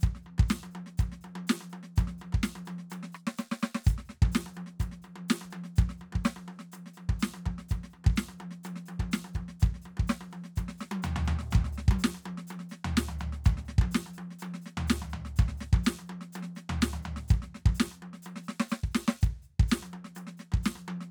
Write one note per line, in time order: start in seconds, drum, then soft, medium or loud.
0.01 kick loud
0.01 hi-hat pedal medium
0.01 high tom medium
0.16 snare soft
0.23 hi-hat pedal soft
0.27 high tom soft
0.39 kick loud
0.39 high tom medium
0.49 snare loud
0.49 hi-hat pedal medium
0.64 high tom medium
0.72 hi-hat pedal soft
0.76 high tom medium
0.87 snare soft
0.98 kick loud
0.98 hi-hat pedal medium
0.98 high tom medium
1.13 snare soft
1.22 hi-hat pedal soft
1.22 high tom medium
1.36 high tom medium
1.48 snare loud
1.48 hi-hat pedal medium
1.61 high tom medium
1.70 hi-hat pedal soft
1.70 high tom medium
1.84 snare soft
1.97 kick loud
1.97 hi-hat pedal medium
1.97 high tom loud
2.08 snare soft
2.19 hi-hat pedal soft
2.19 high tom medium
2.33 kick loud
2.33 high tom medium
2.44 snare loud
2.44 hi-hat pedal medium
2.56 high tom medium
2.66 hi-hat pedal medium
2.66 high tom medium
2.79 snare soft
2.91 hi-hat pedal medium
2.91 high tom medium
3.04 snare soft
3.13 cross-stick medium
3.13 hi-hat pedal soft
3.28 snare medium
3.38 snare medium
3.38 hi-hat pedal medium
3.52 snare medium
3.60 snare loud
3.60 hi-hat pedal medium
3.75 snare medium
3.85 closed hi-hat medium
3.85 kick loud
3.85 hi-hat pedal medium
3.99 snare soft
4.06 hi-hat pedal soft
4.10 snare soft
4.23 kick loud
4.23 high tom loud
4.33 snare loud
4.33 hi-hat pedal medium
4.47 high tom medium
4.54 hi-hat pedal soft
4.54 high tom medium
4.67 snare soft
4.80 kick medium
4.80 hi-hat pedal medium
4.80 high tom medium
4.92 snare soft
5.03 hi-hat pedal soft
5.03 high tom medium
5.17 high tom medium
5.29 snare loud
5.29 hi-hat pedal medium
5.42 kick soft
5.42 high tom medium
5.51 hi-hat pedal soft
5.51 high tom medium
5.65 snare soft
5.77 kick loud
5.77 hi-hat pedal medium
5.77 high tom medium
5.90 snare soft
5.98 hi-hat pedal soft
5.98 high tom medium
6.13 kick medium
6.13 high tom medium
6.25 snare loud
6.25 hi-hat pedal medium
6.37 high tom medium
6.49 high tom medium
6.60 snare soft
6.73 hi-hat pedal medium
6.73 high tom medium
6.87 snare soft
6.94 hi-hat pedal medium
6.94 high tom medium
7.10 kick medium
7.10 high tom medium
7.20 snare loud
7.20 hi-hat pedal medium
7.35 high tom medium
7.46 kick medium
7.46 high tom medium
7.59 snare soft
7.70 kick medium
7.70 hi-hat pedal medium
7.70 high tom medium
7.84 snare soft
7.91 hi-hat pedal soft
7.91 high tom soft
8.05 kick loud
8.05 high tom medium
8.17 snare loud
8.17 hi-hat pedal medium
8.29 high tom medium
8.39 hi-hat pedal soft
8.39 high tom medium
8.52 snare soft
8.64 hi-hat pedal medium
8.64 high tom loud
8.77 snare soft
8.86 hi-hat pedal medium
8.86 high tom medium
9.00 kick medium
9.00 high tom loud
9.12 snare loud
9.12 hi-hat pedal medium
9.25 high tom medium
9.34 kick medium
9.34 hi-hat pedal soft
9.34 high tom medium
9.49 snare soft
9.61 kick loud
9.61 hi-hat pedal medium
9.61 high tom medium
9.75 snare soft
9.82 hi-hat pedal soft
9.82 high tom medium
9.98 kick medium
9.98 high tom medium
10.08 snare loud
10.08 hi-hat pedal medium
10.22 high tom medium
10.32 hi-hat pedal soft
10.32 high tom medium
10.45 snare soft
10.56 kick medium
10.56 hi-hat pedal medium
10.56 high tom medium
10.69 snare medium
10.79 snare medium
10.79 hi-hat pedal medium
10.92 high tom loud
11.03 floor tom loud
11.03 hi-hat pedal medium
11.17 floor tom loud
11.25 floor tom loud
11.25 hi-hat pedal soft
11.40 snare medium
11.52 floor tom loud
11.52 hi-hat pedal medium
11.56 kick loud
11.65 snare soft
11.73 hi-hat pedal medium
11.79 snare medium
11.89 kick loud
11.89 high tom loud
12.00 hi-hat pedal medium
12.05 snare loud
12.15 high tom medium
12.23 hi-hat pedal soft
12.23 high tom loud
12.38 snare soft
12.48 hi-hat pedal medium
12.48 high tom medium
12.60 snare soft
12.70 snare soft
12.70 hi-hat pedal medium
12.85 floor tom loud
12.97 snare loud
12.97 hi-hat pedal medium
13.09 floor tom medium
13.20 floor tom medium
13.20 hi-hat pedal soft
13.33 snare soft
13.45 kick loud
13.45 floor tom loud
13.45 hi-hat pedal medium
13.58 snare soft
13.66 snare soft
13.66 hi-hat pedal soft
13.79 kick loud
13.79 high tom loud
13.92 snare loud
13.92 hi-hat pedal medium
14.07 high tom medium
14.14 hi-hat pedal medium
14.19 high tom medium
14.31 snare soft
14.40 hi-hat pedal medium
14.40 high tom loud
14.55 snare soft
14.62 hi-hat pedal soft
14.67 snare soft
14.78 floor tom loud
14.88 snare loud
14.88 hi-hat pedal medium
15.03 floor tom medium
15.10 floor tom medium
15.10 hi-hat pedal soft
15.26 snare soft
15.37 kick loud
15.37 floor tom medium
15.37 hi-hat pedal medium
15.49 snare soft
15.58 snare medium
15.58 hi-hat pedal soft
15.74 kick loud
15.74 high tom medium
15.84 snare loud
15.84 hi-hat pedal medium
16.00 high tom medium
16.07 hi-hat pedal soft
16.07 high tom medium
16.22 snare soft
16.33 hi-hat pedal medium
16.33 high tom loud
16.43 snare soft
16.56 snare soft
16.56 hi-hat pedal soft
16.70 floor tom loud
16.82 snare loud
16.82 hi-hat pedal medium
16.94 floor tom medium
17.00 kick soft
17.00 hi-hat pedal soft
17.06 floor tom medium
17.17 snare medium
17.29 kick loud
17.29 hi-hat pedal medium
17.29 high tom medium
17.43 snare soft
17.55 snare soft
17.66 kick loud
17.66 high tom medium
17.75 hi-hat pedal medium
17.81 snare loud
17.92 high tom soft
18.03 high tom medium
18.14 snare soft
18.23 hi-hat pedal medium
18.23 high tom medium
18.37 snare medium
18.45 hi-hat pedal soft
18.49 snare medium
18.61 snare loud
18.70 snare medium
18.70 hi-hat pedal medium
18.84 kick medium
18.92 snare loud
18.92 hi-hat pedal soft
19.09 snare loud
19.22 kick loud
19.22 hi-hat pedal medium
19.43 hi-hat pedal soft
19.60 kick loud
19.69 snare loud
19.69 hi-hat pedal medium
19.83 high tom medium
19.91 hi-hat pedal soft
19.91 high tom medium
20.05 snare soft
20.16 hi-hat pedal medium
20.16 high tom medium
20.28 snare soft
20.38 snare soft
20.38 hi-hat pedal soft
20.53 kick loud
20.53 high tom medium
20.64 snare loud
20.64 hi-hat pedal medium
20.76 high tom medium
20.85 hi-hat pedal soft
20.85 high tom loud
21.02 snare soft